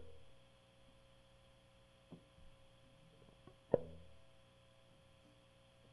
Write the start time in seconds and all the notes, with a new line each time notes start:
3.75 B4